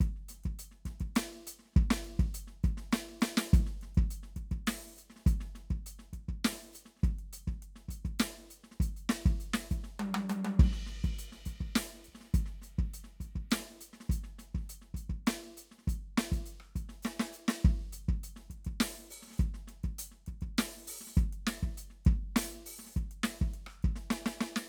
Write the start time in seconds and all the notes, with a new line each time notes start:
0.01 kick, closed hi-hat
0.16 snare
0.29 closed hi-hat, snare
0.44 kick, closed hi-hat
0.59 closed hi-hat
0.72 snare
0.86 kick, snare, closed hi-hat
1.00 kick, closed hi-hat
1.16 closed hi-hat, snare
1.42 snare
1.47 closed hi-hat
1.60 snare
1.63 snare
1.66 snare
1.74 kick, snare, closed hi-hat
1.91 snare
2.05 snare, closed hi-hat
2.20 kick, closed hi-hat
2.35 closed hi-hat
2.48 snare
2.64 closed hi-hat, kick
2.78 snare
2.93 snare, hi-hat pedal
3.22 snare, hi-hat pedal
3.38 snare
3.54 closed hi-hat, kick
3.67 snare
3.82 snare, closed hi-hat
3.95 kick, closed hi-hat
4.11 closed hi-hat
4.24 snare
4.37 kick, closed hi-hat
4.52 kick, closed hi-hat
4.67 open hi-hat, snare
4.77 snare
4.81 snare
4.88 snare
4.97 closed hi-hat, hi-hat pedal
5.10 snare
5.17 snare
5.20 snare
5.27 closed hi-hat, kick
5.41 snare
5.56 snare, closed hi-hat
5.71 kick, closed hi-hat
5.87 closed hi-hat
5.99 snare
6.13 kick, closed hi-hat
6.29 kick, closed hi-hat
6.45 open hi-hat, snare
6.53 snare
6.73 closed hi-hat, hi-hat pedal
6.86 snare
6.97 snare
6.99 snare
7.04 kick, closed hi-hat
7.19 closed hi-hat
7.33 closed hi-hat
7.48 kick, snare
7.63 closed hi-hat
7.76 snare
7.89 closed hi-hat, kick
8.05 kick, closed hi-hat
8.20 closed hi-hat, snare
8.36 snare
8.51 closed hi-hat
8.64 snare
8.72 snare
8.81 closed hi-hat, kick
8.97 closed hi-hat
9.10 snare
9.26 closed hi-hat, kick
9.41 closed hi-hat
9.54 snare
9.71 closed hi-hat, kick
9.84 snare
10.00 high tom
10.15 high tom
10.30 hi-hat pedal, high tom
10.45 high tom
10.60 kick, crash
10.73 snare
10.87 snare
11.04 closed hi-hat, kick
11.19 closed hi-hat
11.33 snare
11.46 closed hi-hat, kick, snare
11.60 kick, closed hi-hat
11.76 open hi-hat, snare
12.05 open hi-hat, hi-hat pedal
12.09 kick
12.15 snare
12.21 snare
12.25 snare
12.34 closed hi-hat, kick
12.46 snare
12.62 closed hi-hat, snare
12.79 kick, closed hi-hat
12.94 closed hi-hat
13.04 snare
13.21 closed hi-hat, kick, snare
13.36 kick
13.51 closed hi-hat, snare
13.60 snare
13.69 snare
13.72 snare
13.81 closed hi-hat
13.94 snare
14.01 snare
14.05 snare
14.10 closed hi-hat, kick
14.24 snare
14.39 closed hi-hat, snare
14.54 kick, snare, closed hi-hat
14.61 snare
14.70 closed hi-hat
14.82 snare
14.95 closed hi-hat, kick
15.10 kick, closed hi-hat
15.27 closed hi-hat, snare
15.41 snare
15.58 closed hi-hat
15.72 snare
15.79 snare
15.83 snare
15.88 closed hi-hat, kick
16.18 snare
16.32 closed hi-hat, kick, snare
16.46 closed hi-hat
16.61 cross-stick
16.76 closed hi-hat, kick
16.89 snare
17.03 snare, hi-hat pedal
17.20 snare
17.33 hi-hat pedal
17.49 snare
17.65 kick
17.93 closed hi-hat
18.08 kick, snare
18.24 closed hi-hat
18.37 snare
18.50 kick, closed hi-hat
18.65 kick, closed hi-hat
18.81 open hi-hat, snare
19.11 open hi-hat
19.23 snare
19.28 snare
19.31 snare
19.33 snare
19.38 kick, closed hi-hat, hi-hat pedal
19.55 snare
19.68 snare, closed hi-hat
19.84 kick, closed hi-hat
19.99 closed hi-hat
20.12 snare
20.27 kick, closed hi-hat
20.41 kick, closed hi-hat
20.58 open hi-hat, snare
20.88 open hi-hat
21.01 snare
21.07 snare
21.11 snare
21.16 kick, snare, closed hi-hat, hi-hat pedal
21.33 closed hi-hat
21.47 snare
21.63 kick, closed hi-hat
21.78 closed hi-hat
21.91 snare
22.06 kick, closed hi-hat
22.37 open hi-hat, snare
22.45 snare
22.67 open hi-hat
22.79 snare
22.84 snare
22.87 snare
22.94 kick, hi-hat pedal
22.98 closed hi-hat
23.12 closed hi-hat
23.24 snare
23.39 kick, closed hi-hat
23.54 closed hi-hat
23.67 cross-stick
23.83 kick, closed hi-hat
23.96 snare
24.11 snare, hi-hat pedal
24.26 snare
24.41 snare
24.56 snare